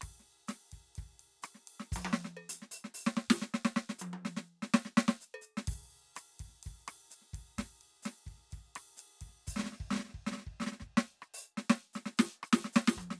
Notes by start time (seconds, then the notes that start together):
0.01 kick, cross-stick, hi-hat pedal, ride
0.08 kick
0.20 snare
0.48 snare, hi-hat pedal, ride
0.72 kick, ride
0.95 kick, hi-hat pedal, ride
1.19 ride
1.42 cross-stick, hi-hat pedal, ride
1.55 snare
1.67 ride
1.80 snare
1.92 kick, hi-hat pedal
1.96 kick, high tom
2.01 kick
2.05 high tom
2.13 snare
2.25 snare
2.37 percussion
2.49 closed hi-hat
2.62 snare
2.71 open hi-hat, hi-hat pedal
2.84 snare
2.94 open hi-hat
3.02 hi-hat pedal
3.06 snare
3.17 snare
3.28 kick, snare, hi-hat pedal
3.42 snare
3.54 snare
3.65 snare
3.76 snare
3.89 snare
3.99 hi-hat pedal, high tom
4.13 high tom
4.25 snare
4.37 snare
4.45 hi-hat pedal
4.62 snare
4.74 snare
4.85 snare
4.97 snare, hi-hat pedal
5.08 snare
5.21 hi-hat pedal
5.34 percussion
5.41 hi-hat pedal
5.57 snare
5.67 kick, hi-hat pedal, ride
5.79 kick
6.16 cross-stick, hi-hat pedal, ride
6.39 kick, ride
6.45 kick, snare
6.63 kick, hi-hat pedal, ride
6.72 kick
6.88 cross-stick, ride
7.10 hi-hat pedal, ride
7.21 snare
7.33 kick, ride
7.39 kick
7.58 kick, snare, hi-hat pedal, ride
7.63 kick
7.81 ride
8.03 snare, hi-hat pedal, ride
8.25 kick, snare, ride
8.32 kick
8.37 snare
8.51 kick, hi-hat pedal, ride
8.58 kick
8.75 cross-stick, ride
8.97 hi-hat pedal, ride
9.21 kick, ride
9.27 kick, snare
9.47 kick, hi-hat pedal
9.56 snare
9.59 snare
9.64 snare
9.66 snare
9.70 snare
9.72 snare
9.80 kick
9.85 kick
9.91 snare
9.93 snare
9.95 snare
9.99 snare
10.04 snare
10.09 snare
10.14 kick
10.19 kick
10.27 snare
10.32 snare
10.33 snare
10.37 snare
10.40 snare
10.47 kick
10.52 kick
10.60 snare
10.62 snare
10.67 snare
10.72 snare
10.80 kick, snare
10.87 kick
10.97 snare
11.22 cross-stick
11.34 open hi-hat
11.40 hi-hat pedal
11.57 snare
11.70 snare
11.93 snare, hi-hat pedal
12.06 snare
12.17 snare, hi-hat pedal
12.43 cross-stick, hi-hat pedal
12.53 snare
12.64 snare
12.73 snare, hi-hat pedal
12.88 snare
12.97 kick, hi-hat pedal, high tom
13.02 kick
13.11 snare